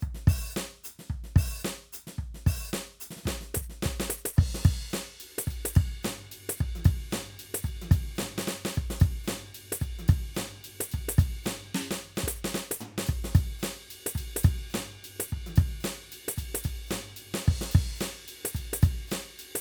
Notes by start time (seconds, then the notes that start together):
0.01 closed hi-hat, kick
0.15 snare
0.28 open hi-hat, kick
0.53 hi-hat pedal
0.57 snare
0.85 closed hi-hat
1.00 snare
1.11 kick, closed hi-hat
1.25 snare
1.37 open hi-hat, kick
1.62 snare, hi-hat pedal
1.93 closed hi-hat
2.08 snare
2.19 kick
2.35 snare
2.47 open hi-hat, kick
2.70 hi-hat pedal
2.74 snare
3.01 closed hi-hat
3.12 snare
3.18 snare
3.24 kick, snare
3.28 snare
3.42 snare
3.55 kick, high tom
3.71 snare
3.83 kick, snare, hi-hat pedal
4.01 snare
4.11 high tom
4.26 high tom
4.37 kick, crash
4.55 snare
4.66 kick, ride bell
4.91 snare, hi-hat pedal
5.21 ride
5.39 high tom
5.48 kick, ride
5.66 high tom
5.76 kick, ride bell
6.04 snare, floor tom, hi-hat pedal
6.32 ride
6.50 high tom
6.61 kick
6.76 high tom
6.86 kick, ride
7.12 snare, floor tom, hi-hat pedal
7.40 ride
7.55 high tom
7.65 kick, ride
7.83 high tom
7.92 kick, ride
8.16 snare, hi-hat pedal
8.21 floor tom
8.39 snare
8.48 snare
8.66 snare
8.75 kick, ride
8.91 snare
9.01 kick, ride
9.25 snare, floor tom, hi-hat pedal
9.55 ride
9.73 high tom
9.82 kick, ride
10.00 high tom
10.09 kick, ride
10.35 snare, floor tom, hi-hat pedal
10.65 ride
10.81 high tom
10.92 kick, ride
11.10 high tom
11.19 kick, ride
11.45 snare, floor tom, hi-hat pedal
11.76 snare
11.91 kick, snare, hi-hat pedal
12.01 high tom
12.17 snare, hi-hat pedal
12.24 kick
12.29 high tom
12.45 snare
12.50 hi-hat pedal
12.55 snare
12.72 high tom
12.78 floor tom, hi-hat pedal
12.99 snare, hi-hat pedal
13.07 kick, ride
13.25 snare
13.36 kick, ride
13.60 snare, hi-hat pedal
13.64 ride
13.91 ride
14.07 high tom
14.16 kick, ride
14.37 high tom
14.44 kick, ride
14.71 hi-hat pedal
14.75 snare, floor tom
15.05 ride
15.21 high tom
15.33 kick
15.47 high tom
15.57 kick, ride
15.81 hi-hat pedal
15.85 snare, ride
16.13 ride
16.29 high tom
16.39 kick, ride
16.56 high tom
16.65 kick, ride
16.88 snare, floor tom, hi-hat pedal
17.17 ride
17.35 snare
17.45 kick, crash
17.62 snare
17.72 kick, ride
17.96 hi-hat pedal
18.01 snare, ride
18.29 ride
18.46 high tom
18.56 kick, ride
18.74 high tom
18.84 kick, ride
19.09 hi-hat pedal, ride
19.13 snare
19.40 ride
19.56 high tom